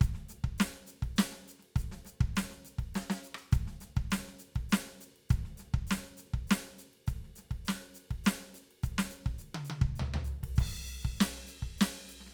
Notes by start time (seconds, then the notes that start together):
0.01 kick, hi-hat pedal, ride
0.14 snare
0.29 snare, hi-hat pedal, ride
0.44 kick, ride
0.58 snare, hi-hat pedal, ride
0.87 hi-hat pedal, ride
1.02 kick, ride
1.16 snare, hi-hat pedal, ride
1.32 snare
1.48 hi-hat pedal, ride
1.59 snare, ride
1.76 kick, hi-hat pedal, ride
1.92 snare
2.05 snare, hi-hat pedal, ride
2.21 kick, ride
2.36 snare, hi-hat pedal, ride
2.51 snare
2.65 hi-hat pedal, ride
2.79 kick, ride
2.94 snare, hi-hat pedal, ride
3.10 snare
3.24 hi-hat pedal, ride
3.35 cross-stick
3.39 ride
3.52 kick, hi-hat pedal, ride
3.67 snare
3.81 snare, hi-hat pedal, ride
3.97 kick, ride
4.11 snare, hi-hat pedal, ride
4.28 snare
4.39 hi-hat pedal, ride
4.56 kick, ride
4.69 snare, hi-hat pedal, ride
4.86 snare
5.01 hi-hat pedal, ride
5.16 ride
5.29 kick, hi-hat pedal, ride
5.45 snare
5.57 snare, hi-hat pedal, ride
5.74 kick, ride
5.87 snare, hi-hat pedal, ride
6.17 hi-hat pedal, ride
6.34 kick, ride
6.47 snare, hi-hat pedal, ride
6.79 hi-hat pedal, ride
6.94 ride
7.07 kick, hi-hat pedal, ride
7.24 snare
7.36 snare, hi-hat pedal, ride
7.51 kick, ride
7.65 snare, hi-hat pedal, ride
7.94 hi-hat pedal, ride
8.11 kick, ride
8.24 snare, hi-hat pedal, ride
8.40 snare
8.55 hi-hat pedal, ride
8.71 ride
8.83 kick, hi-hat pedal, ride
8.98 snare
9.10 hi-hat pedal, ride
9.26 kick, ride
9.38 hi-hat pedal, ride
9.55 high tom
9.65 hi-hat pedal
9.70 high tom
9.81 kick
9.96 hi-hat pedal
10.00 floor tom
10.14 floor tom
10.25 hi-hat pedal, ride
10.43 kick, ride
10.56 kick, hi-hat pedal
10.60 crash
10.86 hi-hat pedal, ride
11.03 kick, ride
11.16 hi-hat pedal
11.21 snare, crash
11.37 snare
11.47 hi-hat pedal, ride
11.62 kick, ride
11.78 snare, hi-hat pedal, crash
11.98 snare
12.09 hi-hat pedal, ride
12.20 snare
12.26 snare
12.30 snare